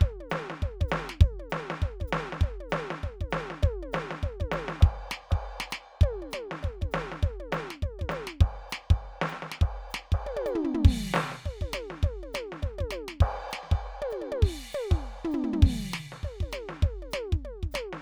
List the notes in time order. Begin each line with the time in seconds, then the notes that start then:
0.01 kick, high tom
0.20 high tom
0.30 snare, hi-hat pedal, high tom
0.50 snare
0.62 kick, high tom
0.80 kick, high tom
0.88 snare, hi-hat pedal
0.93 high tom
1.09 snare
1.21 kick, high tom
1.39 high tom
1.50 snare, hi-hat pedal, high tom
1.70 snare
1.82 kick, high tom
2.00 kick, high tom
2.07 hi-hat pedal
2.12 snare, high tom
2.32 snare
2.41 kick, high tom
2.60 high tom
2.69 snare, hi-hat pedal, high tom
2.90 snare
3.03 kick, high tom
3.21 kick, high tom
3.30 snare, hi-hat pedal, high tom
3.50 snare
3.62 kick, high tom
3.82 high tom
3.92 snare, hi-hat pedal, high tom
4.11 snare
4.23 kick, high tom
4.40 kick, high tom
4.51 snare, hi-hat pedal, high tom
4.68 snare
4.80 kick, crash
5.10 snare, hi-hat pedal
5.30 kick, crash
5.60 snare
5.70 snare, hi-hat pedal
6.01 kick, high tom
6.22 high tom
6.30 snare, hi-hat pedal, high tom
6.51 snare
6.62 kick, high tom
6.81 kick, high tom
6.91 snare, hi-hat pedal, high tom
7.12 snare
7.22 kick, high tom
7.40 high tom
7.52 snare, hi-hat pedal, high tom
7.70 snare
7.82 kick, high tom
7.99 kick, high tom
8.09 snare, hi-hat pedal, high tom
8.27 snare
8.41 kick, crash
8.70 snare, hi-hat pedal
8.90 kick, crash
9.21 snare
9.28 hi-hat pedal
9.33 snare
9.42 snare
9.52 snare
9.61 kick, crash
9.90 hi-hat pedal
9.94 snare
10.12 kick, crash
10.26 high tom
10.36 high tom
10.46 hi-hat pedal, high tom
10.54 floor tom
10.64 floor tom
10.74 floor tom
10.85 kick, crash
11.14 snare, hi-hat pedal
11.16 snare
11.32 snare
11.42 kick, hi-hat pedal, high tom
11.61 kick, high tom
11.73 snare, hi-hat pedal, high tom
11.90 snare
12.03 kick, high tom
12.23 high tom
12.33 snare, hi-hat pedal, high tom
12.52 snare
12.62 kick, high tom
12.78 kick, high tom
12.91 snare, hi-hat pedal, high tom
13.08 snare
13.20 kick, crash
13.50 snare, hi-hat pedal
13.63 snare
13.71 kick, crash
14.01 high tom
14.10 hi-hat pedal, high tom
14.21 high tom
14.31 high tom
14.42 kick, crash
14.72 hi-hat pedal, high tom
14.90 kick, crash
15.24 floor tom
15.31 floor tom, hi-hat pedal
15.43 floor tom
15.53 floor tom
15.62 kick, crash
15.92 snare, hi-hat pedal
16.12 snare
16.23 kick, high tom
16.40 kick, high tom
16.52 snare, hi-hat pedal, high tom
16.69 snare
16.82 kick, high tom
17.02 high tom
17.11 snare, hi-hat pedal, high tom
17.32 kick
17.44 high tom
17.63 kick
17.71 snare, hi-hat pedal, high tom
17.93 snare